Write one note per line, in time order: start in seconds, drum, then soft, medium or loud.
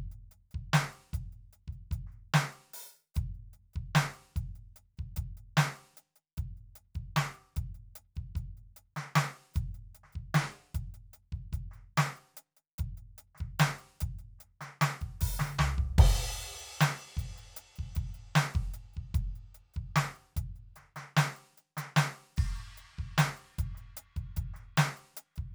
0.12 closed hi-hat soft
0.32 closed hi-hat soft
0.52 kick soft
0.52 closed hi-hat soft
0.74 closed hi-hat medium
0.74 snare loud
0.93 closed hi-hat soft
1.14 closed hi-hat medium
1.14 kick medium
1.33 closed hi-hat soft
1.53 closed hi-hat soft
1.68 kick soft
1.73 closed hi-hat soft
1.92 kick medium
1.92 closed hi-hat medium
2.07 snare soft
2.12 closed hi-hat soft
2.34 closed hi-hat medium
2.34 snare loud
2.53 closed hi-hat soft
2.74 open hi-hat loud
3.15 closed hi-hat medium
3.15 kick medium
3.15 hi-hat pedal medium
3.35 closed hi-hat soft
3.54 closed hi-hat soft
3.74 kick soft
3.74 closed hi-hat soft
3.96 closed hi-hat medium
3.96 snare loud
4.15 closed hi-hat soft
4.37 kick medium
4.37 closed hi-hat medium
4.56 closed hi-hat soft
4.77 closed hi-hat medium
4.98 kick soft
4.98 closed hi-hat soft
5.17 closed hi-hat loud
5.17 kick soft
5.38 closed hi-hat soft
5.58 closed hi-hat medium
5.58 snare loud
5.77 closed hi-hat soft
5.98 closed hi-hat medium
6.16 closed hi-hat soft
6.38 kick soft
6.38 closed hi-hat medium
6.58 closed hi-hat soft
6.76 closed hi-hat medium
6.95 kick soft
6.95 closed hi-hat soft
7.17 closed hi-hat loud
7.17 snare loud
7.34 closed hi-hat soft
7.57 closed hi-hat medium
7.57 kick medium
7.75 closed hi-hat soft
7.96 closed hi-hat medium
8.16 kick soft
8.16 closed hi-hat soft
8.36 kick soft
8.36 closed hi-hat medium
8.58 closed hi-hat soft
8.77 closed hi-hat medium
8.97 snare medium
8.97 closed hi-hat medium
9.16 closed hi-hat loud
9.16 snare loud
9.54 kick medium
9.54 closed hi-hat medium
9.54 hi-hat pedal medium
9.75 closed hi-hat soft
9.95 closed hi-hat medium
10.04 snare soft
10.13 kick soft
10.13 closed hi-hat soft
10.35 closed hi-hat loud
10.35 snare loud
10.53 closed hi-hat soft
10.75 kick medium
10.75 closed hi-hat medium
10.95 closed hi-hat soft
11.14 closed hi-hat medium
11.33 kick soft
11.33 closed hi-hat soft
11.53 kick soft
11.53 closed hi-hat medium
11.72 snare soft
11.72 closed hi-hat soft
11.98 closed hi-hat loud
11.98 snare loud
12.17 closed hi-hat soft
12.37 closed hi-hat loud
12.57 closed hi-hat soft
12.79 closed hi-hat medium
12.79 kick medium
12.98 closed hi-hat soft
13.19 closed hi-hat medium
13.35 snare soft
13.35 closed hi-hat soft
13.41 kick soft
13.60 closed hi-hat loud
13.60 snare loud
13.79 closed hi-hat soft
14.01 closed hi-hat loud
14.01 kick medium
14.19 closed hi-hat soft
14.39 closed hi-hat medium
14.39 snare soft
14.61 snare soft
14.61 closed hi-hat medium
14.82 closed hi-hat loud
14.82 snare loud
15.02 kick soft
15.02 closed hi-hat soft
15.20 open hi-hat loud
15.20 kick medium
15.20 snare soft
15.40 snare medium
15.40 high tom loud
15.59 snare loud
15.59 floor tom loud
15.79 kick medium
15.99 kick loud
15.99 crash loud
16.42 closed hi-hat medium
16.60 closed hi-hat medium
16.81 closed hi-hat loud
16.81 snare loud
16.99 closed hi-hat soft
17.17 kick medium
17.17 closed hi-hat medium
17.36 snare soft
17.36 closed hi-hat soft
17.57 closed hi-hat loud
17.76 kick soft
17.76 closed hi-hat soft
17.96 kick medium
17.96 closed hi-hat medium
18.15 closed hi-hat soft
18.36 closed hi-hat medium
18.36 snare loud
18.55 kick medium
18.55 closed hi-hat soft
18.74 closed hi-hat medium
18.94 kick soft
18.94 closed hi-hat soft
19.15 closed hi-hat medium
19.15 kick medium
19.36 closed hi-hat soft
19.55 closed hi-hat medium
19.74 kick soft
19.74 closed hi-hat soft
19.96 closed hi-hat loud
19.96 snare loud
20.16 closed hi-hat soft
20.37 closed hi-hat loud
20.37 kick medium
20.56 closed hi-hat soft
20.76 snare soft
20.76 closed hi-hat medium
20.96 snare medium
20.96 closed hi-hat medium
21.17 closed hi-hat medium
21.17 snare loud
21.37 closed hi-hat soft
21.58 closed hi-hat soft
21.77 snare medium
21.77 closed hi-hat loud
21.97 closed hi-hat medium
21.97 snare loud
22.37 kick medium
22.37 hi-hat pedal medium
22.37 crash medium
22.57 closed hi-hat soft
22.78 closed hi-hat medium
22.94 snare soft
22.99 kick soft
23.18 closed hi-hat loud
23.18 snare loud
23.37 closed hi-hat soft
23.59 kick medium
23.59 closed hi-hat loud
23.75 snare soft
23.75 closed hi-hat soft
23.97 closed hi-hat loud
24.17 kick soft
24.17 closed hi-hat soft
24.37 closed hi-hat medium
24.37 kick medium
24.54 snare soft
24.54 closed hi-hat soft
24.78 closed hi-hat loud
24.78 snare loud
24.97 closed hi-hat soft
25.17 closed hi-hat loud
25.36 kick soft
25.36 closed hi-hat soft